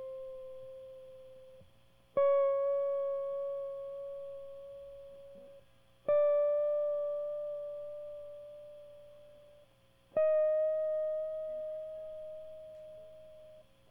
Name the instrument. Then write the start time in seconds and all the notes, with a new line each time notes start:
electric guitar
2.17 C#5
6.09 D5
10.17 D#5